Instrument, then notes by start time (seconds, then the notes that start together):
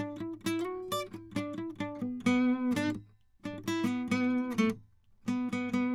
acoustic guitar
0.00 D4
0.22 E4
0.48 E4
0.62 F#4
0.93 D5
1.16 E4
1.38 D4
1.59 E4
1.82 D4
2.03 B3
2.28 B3
2.78 D4
3.47 D4
3.69 E4
3.85 B3
4.13 B3
4.60 A3
5.29 B3
5.54 B3
5.75 B3